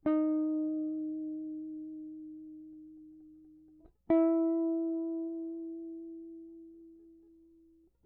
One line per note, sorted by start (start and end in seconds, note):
0.05 3.62 D#4
4.09 7.32 E4